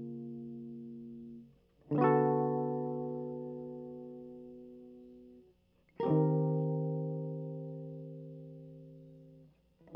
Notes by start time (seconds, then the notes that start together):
1.92 D3
1.98 B3 F#4
2.04 A4 C5
6.00 G4 A#4
6.06 C4
6.11 D#3